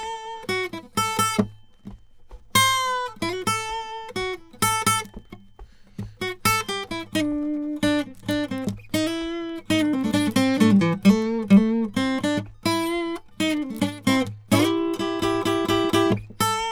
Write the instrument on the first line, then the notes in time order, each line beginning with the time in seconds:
acoustic guitar
0.01 A4
0.50 F#4
0.65 E4
0.98 A4
1.20 A4
2.56 C5
3.07 A4
3.23 F#4
3.48 A4
4.17 F#4
4.34 E4
4.63 A4
4.87 A4
6.22 F#4
6.46 A4
6.61 C5
6.69 G4
6.92 E4
7.16 D4
7.83 D4
8.01 C4
8.29 D4
8.52 C4
8.95 D#4
9.07 E4
9.71 D#4
9.81 D3 D4
9.94 C#4
10.05 A3
10.15 D4
10.28 A3
10.37 C4
10.58 A2 A3 D4
10.72 G3
10.82 E3
11.06 A3
11.15 A3
11.51 G3
11.59 A3
11.97 C4
12.25 D4
12.66 E4
13.41 D#4
13.51 D4
13.63 C4
13.82 D4
14.08 C4 E4
14.52 E4 G4 A4
15.00 E4 G4
15.23 E4 G4
15.46 E4 G4
15.70 E4 G4
15.94 E4 G4
16.41 A4